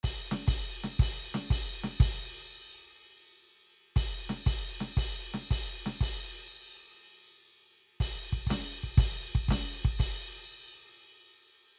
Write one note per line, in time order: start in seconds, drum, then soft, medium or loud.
0.03 kick medium
0.03 crash loud
0.31 snare medium
0.47 kick medium
0.47 crash loud
0.84 snare medium
0.99 kick loud
0.99 crash loud
1.34 snare medium
1.50 kick medium
1.50 crash loud
1.84 snare medium
2.00 kick loud
2.00 crash loud
3.96 kick medium
3.96 crash loud
4.29 snare medium
4.46 kick medium
4.46 crash loud
4.81 snare medium
4.97 kick medium
4.97 crash loud
5.34 snare medium
5.51 kick medium
5.51 crash loud
5.86 snare medium
6.01 kick medium
6.01 crash loud
8.00 kick medium
8.00 crash loud
8.33 kick medium
8.47 kick medium
8.47 snare medium
8.47 crash loud
8.52 kick soft
8.84 kick soft
8.98 kick loud
8.98 crash loud
9.35 kick medium
9.49 kick medium
9.49 snare loud
9.49 crash loud
9.54 kick soft
9.85 kick medium
9.99 kick medium
9.99 crash loud